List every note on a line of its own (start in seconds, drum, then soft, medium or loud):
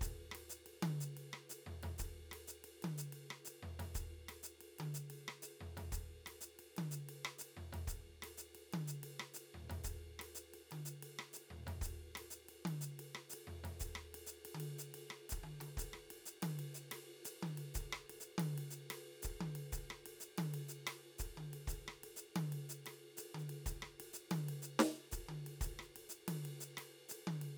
0.01 kick soft
0.01 hi-hat pedal medium
0.01 ride medium
0.31 cross-stick medium
0.31 ride medium
0.49 hi-hat pedal medium
0.66 ride soft
0.82 high tom loud
0.82 ride medium
1.00 hi-hat pedal medium
1.17 ride soft
1.33 cross-stick medium
1.49 hi-hat pedal medium
1.49 ride medium
1.66 floor tom soft
1.83 floor tom medium
1.83 ride soft
1.98 kick soft
1.98 hi-hat pedal medium
1.98 ride medium
2.31 cross-stick medium
2.31 ride medium
2.47 hi-hat pedal medium
2.64 ride soft
2.82 high tom medium
2.82 ride soft
2.98 hi-hat pedal medium
3.12 ride soft
3.30 cross-stick medium
3.45 hi-hat pedal medium
3.45 ride soft
3.62 floor tom soft
3.79 floor tom medium
3.79 ride soft
3.95 kick soft
3.95 hi-hat pedal medium
3.95 ride soft
4.28 cross-stick medium
4.28 ride soft
4.43 hi-hat pedal medium
4.61 ride soft
4.79 high tom medium
4.79 ride soft
4.94 hi-hat pedal medium
5.10 ride soft
5.16 hi-hat pedal soft
5.28 cross-stick medium
5.42 hi-hat pedal medium
5.42 ride soft
5.61 floor tom soft
5.77 floor tom medium
5.77 ride soft
5.92 kick soft
5.92 hi-hat pedal medium
5.92 ride soft
6.26 cross-stick medium
6.26 ride medium
6.41 hi-hat pedal medium
6.59 ride soft
6.77 high tom medium
6.77 ride soft
6.91 hi-hat pedal medium
7.09 ride medium
7.25 cross-stick medium
7.38 hi-hat pedal medium
7.38 ride medium
7.57 floor tom soft
7.73 floor tom medium
7.73 ride soft
7.87 kick soft
7.87 hi-hat pedal medium
7.87 ride soft
8.22 cross-stick medium
8.22 ride medium
8.37 hi-hat pedal medium
8.55 ride soft
8.73 high tom medium
8.73 ride soft
8.87 hi-hat pedal medium
9.03 ride medium
9.09 hi-hat pedal soft
9.20 cross-stick medium
9.34 hi-hat pedal medium
9.34 ride soft
9.54 floor tom soft
9.70 floor tom medium
9.70 ride soft
9.84 kick soft
9.84 hi-hat pedal medium
9.84 ride soft
10.19 cross-stick medium
10.19 ride medium
10.35 hi-hat pedal medium
10.54 ride soft
10.71 high tom medium
10.71 ride soft
10.85 hi-hat pedal medium
11.03 ride medium
11.19 cross-stick medium
11.33 hi-hat pedal medium
11.33 ride soft
11.50 floor tom soft
11.67 floor tom medium
11.67 ride soft
11.81 kick soft
11.81 hi-hat pedal medium
11.86 ride soft
12.15 cross-stick medium
12.15 ride medium
12.30 hi-hat pedal medium
12.49 ride soft
12.65 high tom medium
12.65 ride soft
12.81 hi-hat pedal medium
12.99 ride medium
13.15 cross-stick medium
13.30 hi-hat pedal medium
13.30 ride medium
13.47 floor tom soft
13.64 floor tom medium
13.64 ride soft
13.80 kick soft
13.80 hi-hat pedal medium
13.80 ride medium
13.95 cross-stick medium
14.14 ride medium
14.26 hi-hat pedal medium
14.45 ride medium
14.55 high tom medium
14.60 ride medium
14.78 hi-hat pedal medium
14.94 ride medium
15.10 cross-stick medium
15.29 kick soft
15.29 hi-hat pedal medium
15.29 ride medium
15.43 high tom soft
15.60 high tom soft
15.60 ride medium
15.77 kick soft
15.77 hi-hat pedal medium
15.77 ride medium
15.93 cross-stick medium
16.10 ride medium
16.26 hi-hat pedal medium
16.42 high tom medium
16.42 ride medium
16.47 hi-hat pedal soft
16.59 ride soft
16.74 hi-hat pedal medium
16.91 cross-stick medium
16.91 ride medium
17.25 hi-hat pedal medium
17.25 ride medium
17.43 hi-hat pedal soft
17.43 high tom medium
17.57 ride soft
17.74 kick soft
17.74 hi-hat pedal medium
17.74 ride medium
17.93 cross-stick medium
18.10 ride medium
18.20 hi-hat pedal medium
18.38 high tom loud
18.38 ride medium
18.58 ride medium
18.70 hi-hat pedal medium
18.90 cross-stick medium
18.90 ride medium
19.22 kick soft
19.22 hi-hat pedal medium
19.22 ride medium
19.40 high tom medium
19.55 ride medium
19.72 kick soft
19.72 hi-hat pedal medium
19.72 ride medium
19.90 cross-stick medium
20.06 ride medium
20.20 hi-hat pedal medium
20.38 high tom medium
20.38 ride medium
20.42 hi-hat pedal soft
20.54 ride medium
20.68 hi-hat pedal medium
20.87 cross-stick medium
20.87 ride medium
21.18 kick soft
21.18 hi-hat pedal medium
21.18 ride medium
21.37 high tom medium
21.53 ride soft
21.67 kick soft
21.67 hi-hat pedal medium
21.67 ride soft
21.88 cross-stick medium
22.03 ride medium
22.16 hi-hat pedal medium
22.36 high tom medium
22.36 ride medium
22.52 ride soft
22.69 hi-hat pedal medium
22.86 cross-stick medium
22.86 ride medium
22.91 hi-hat pedal soft
23.17 hi-hat pedal medium
23.17 ride medium
23.34 high tom medium
23.39 hi-hat pedal soft
23.49 ride soft
23.66 kick soft
23.66 hi-hat pedal medium
23.66 ride soft
23.82 cross-stick medium
24.00 ride medium
24.13 hi-hat pedal medium
24.31 high tom loud
24.31 ride medium
24.35 hi-hat pedal soft
24.49 ride medium
24.62 hi-hat pedal medium
24.79 snare medium
24.79 ride medium
25.11 kick soft
25.11 hi-hat pedal medium
25.11 ride medium
25.29 high tom medium
25.46 ride soft
25.61 kick soft
25.61 hi-hat pedal medium
25.61 ride medium
25.79 cross-stick medium
25.79 hi-hat pedal soft
25.96 ride medium
26.09 hi-hat pedal medium
26.28 high tom medium
26.28 ride medium
26.45 ride soft
26.60 hi-hat pedal medium
26.77 cross-stick medium
26.77 ride medium
27.09 hi-hat pedal medium
27.09 ride medium
27.27 hi-hat pedal soft
27.27 high tom medium
27.41 ride soft